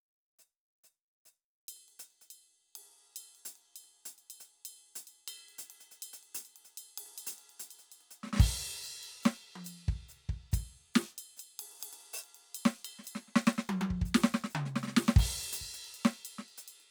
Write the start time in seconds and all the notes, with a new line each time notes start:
0.39 hi-hat pedal
0.84 hi-hat pedal
1.25 hi-hat pedal
1.68 ride bell
1.76 closed hi-hat
1.88 ride
1.99 closed hi-hat
2.10 ride
2.21 closed hi-hat
2.30 ride bell
2.75 ride
3.16 ride bell
3.35 ride
3.45 closed hi-hat
3.55 ride
3.76 ride bell
3.84 closed hi-hat
4.05 closed hi-hat
4.18 ride bell
4.30 ride bell
4.40 closed hi-hat
4.58 closed hi-hat
4.65 ride bell
4.75 closed hi-hat
4.95 closed hi-hat
5.07 ride bell
5.15 closed hi-hat
5.28 ride bell
5.37 closed hi-hat
5.48 ride
5.58 closed hi-hat
5.70 ride
5.80 closed hi-hat
5.91 closed hi-hat
6.02 ride bell
6.13 closed hi-hat
6.23 ride
6.35 closed hi-hat
6.45 ride bell
6.56 ride
6.65 closed hi-hat
6.77 ride bell
6.98 ride
7.06 closed hi-hat
7.18 ride bell
7.27 closed hi-hat
7.38 ride
7.49 ride
7.60 closed hi-hat
7.71 ride bell
7.79 closed hi-hat
7.92 ride bell
8.01 closed hi-hat
8.11 closed hi-hat
8.23 snare
8.26 snare
8.33 snare
8.36 kick, snare, crash
8.83 hi-hat pedal
9.03 ride
9.23 snare, hi-hat pedal
9.55 high tom
9.64 hi-hat pedal, ride bell
9.88 kick
10.09 hi-hat pedal, ride, floor tom
10.29 kick
10.52 kick, hi-hat pedal, ride bell
10.75 ride
10.94 snare, hi-hat pedal
11.18 ride bell
11.37 hi-hat pedal, ride bell
11.59 ride
11.71 open hi-hat
11.79 hi-hat pedal, ride
11.93 closed hi-hat
12.01 crash
12.13 open hi-hat
12.19 hi-hat pedal
12.24 ride
12.35 ride
12.54 ride bell
12.65 snare, hi-hat pedal
12.85 ride bell
12.99 snare
13.04 hi-hat pedal, ride bell
13.15 snare
13.28 snare
13.36 snare
13.46 snare, hi-hat pedal
13.58 snare
13.65 hi-hat pedal, high tom
13.81 high tom
13.90 kick
14.01 kick, hi-hat pedal
14.14 snare
14.24 snare
14.34 snare
14.44 snare
14.50 hi-hat pedal
14.55 mid tom
14.65 snare
14.76 snare
14.82 snare, hi-hat pedal
14.87 snare
14.91 snare
14.96 snare
15.08 snare
15.16 kick, crash
15.23 hi-hat pedal
15.30 closed hi-hat
15.43 ride bell
15.53 closed hi-hat
15.61 kick, ride bell
15.74 closed hi-hat
15.84 ride
15.94 ride bell
16.05 snare
16.25 ride bell
16.38 snare
16.48 ride
16.58 closed hi-hat
16.68 ride bell
16.80 closed hi-hat